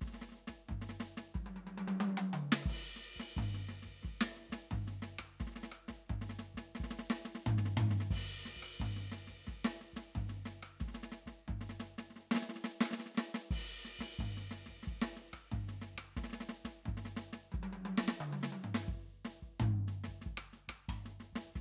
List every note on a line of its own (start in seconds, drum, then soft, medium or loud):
0.01 kick soft
0.01 snare soft
0.07 snare soft
0.12 snare soft
0.21 snare soft
0.29 snare soft
0.32 snare soft
0.36 hi-hat pedal soft
0.47 kick soft
0.47 snare medium
0.69 kick soft
0.69 floor tom medium
0.81 snare soft
0.89 snare soft
1.00 snare medium
1.00 hi-hat pedal medium
1.17 snare medium
1.34 kick soft
1.34 high tom soft
1.46 high tom medium
1.56 high tom medium
1.67 high tom medium
1.78 high tom medium
1.87 open hi-hat soft
1.87 high tom loud
2.00 high tom loud
2.17 high tom loud
2.33 mid tom medium
2.52 snare loud
2.63 kick medium
2.63 cross-stick soft
2.68 crash medium
2.96 snare soft
3.16 kick soft
3.16 snare medium
3.37 kick soft
3.37 floor tom loud
3.54 snare soft
3.68 snare soft
3.68 hi-hat pedal soft
3.82 kick soft
3.82 snare soft
4.03 kick soft
4.03 snare soft
4.21 snare loud
4.33 snare soft
4.33 hi-hat pedal soft
4.50 kick soft
4.50 snare medium
4.71 kick soft
4.71 floor tom medium
4.87 snare soft
5.02 snare medium
5.02 hi-hat pedal soft
5.19 kick soft
5.19 cross-stick medium
5.40 kick soft
5.40 snare soft
5.47 snare soft
5.52 snare soft
5.55 snare soft
5.63 snare soft
5.71 cross-stick medium
5.71 hi-hat pedal medium
5.88 kick soft
5.88 snare medium
6.09 kick soft
6.09 floor tom medium
6.21 snare soft
6.29 snare soft
6.39 snare soft
6.39 hi-hat pedal soft
6.54 kick soft
6.54 snare medium
6.75 snare medium
6.80 kick soft
6.80 snare soft
6.90 snare medium
6.99 snare medium
7.08 snare medium
7.08 hi-hat pedal soft
7.18 kick soft
7.25 snare soft
7.35 snare medium
7.46 kick soft
7.46 floor tom loud
7.58 snare soft
7.65 snare soft
7.77 kick soft
7.77 floor tom loud
7.90 snare soft
8.00 snare soft
8.11 kick medium
8.11 crash medium
8.16 snare soft
8.45 snare soft
8.56 kick soft
8.62 cross-stick medium
8.80 kick soft
8.80 floor tom medium
8.96 snare soft
9.12 snare soft
9.12 hi-hat pedal soft
9.27 kick soft
9.27 snare soft
9.47 kick soft
9.47 snare soft
9.64 snare medium
9.79 snare soft
9.79 hi-hat pedal soft
9.93 kick soft
9.93 snare medium
10.15 kick soft
10.15 floor tom medium
10.29 snare soft
10.45 snare medium
10.45 hi-hat pedal medium
10.62 cross-stick medium
10.80 kick soft
10.80 snare soft
10.88 snare soft
10.94 snare soft
11.03 snare soft
11.12 snare soft
11.12 hi-hat pedal soft
11.26 kick soft
11.26 snare soft
11.48 kick soft
11.48 floor tom medium
11.61 snare soft
11.69 snare soft
11.80 snare medium
11.80 hi-hat pedal soft
11.98 snare medium
12.10 snare soft
12.16 snare soft
12.31 snare loud
12.34 snare medium
12.36 snare medium
12.42 snare soft
12.49 snare soft
12.55 snare soft
12.64 snare medium
12.80 snare loud
12.85 cross-stick medium
12.91 snare soft
12.93 snare medium
12.98 snare soft
12.98 snare medium
13.06 snare soft
13.14 snare soft
13.17 snare medium
13.34 snare medium
13.51 kick medium
13.51 crash medium
13.85 snare soft
13.99 kick soft
13.99 snare medium
14.19 kick soft
14.19 floor tom medium
14.37 snare soft
14.51 snare soft
14.51 hi-hat pedal medium
14.66 kick soft
14.66 snare soft
14.83 snare soft
14.87 kick soft
15.02 snare medium
15.16 snare soft
15.16 hi-hat pedal soft
15.33 kick soft
15.33 cross-stick medium
15.52 kick soft
15.52 floor tom medium
15.68 snare soft
15.81 snare soft
15.81 hi-hat pedal medium
15.95 kick soft
15.95 cross-stick medium
16.17 kick soft
16.17 snare medium
16.24 snare soft
16.29 snare soft
16.33 snare medium
16.40 snare medium
16.49 snare medium
16.49 hi-hat pedal soft
16.64 kick soft
16.64 snare medium
16.85 kick soft
16.85 floor tom medium
16.97 snare soft
17.05 snare soft
17.16 snare medium
17.16 hi-hat pedal medium
17.33 snare soft
17.52 kick soft
17.52 high tom soft
17.63 high tom medium
17.73 high tom medium
17.85 high tom medium
17.97 snare loud
18.08 snare medium
18.17 hi-hat pedal soft
18.17 mid tom medium
18.33 high tom medium
18.37 hi-hat pedal medium
18.43 snare medium
18.52 high tom medium
18.64 floor tom medium
18.64 hi-hat pedal soft
18.74 snare medium
18.83 cross-stick soft
18.88 kick soft
19.25 snare medium
19.25 hi-hat pedal soft
19.42 kick soft
19.60 kick soft
19.60 floor tom loud
19.88 snare soft
19.93 hi-hat pedal soft
20.04 snare medium
20.08 kick soft
20.21 snare soft
20.26 kick soft
20.37 cross-stick medium
20.53 snare soft
20.53 hi-hat pedal soft
20.68 kick soft
20.68 cross-stick medium
20.88 kick soft
20.88 floor tom medium
21.05 snare soft
21.20 snare soft
21.20 hi-hat pedal soft
21.33 kick soft
21.33 snare medium
21.55 kick soft
21.55 snare soft